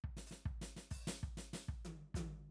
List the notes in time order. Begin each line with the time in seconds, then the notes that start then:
0.04 kick
0.17 snare
0.27 hi-hat pedal
0.31 snare
0.46 kick
0.61 snare
0.76 snare
0.91 kick, hi-hat pedal
1.07 snare
1.23 kick
1.37 snare
1.53 snare, hi-hat pedal
1.68 kick
1.85 high tom
2.14 kick, hi-hat pedal, high tom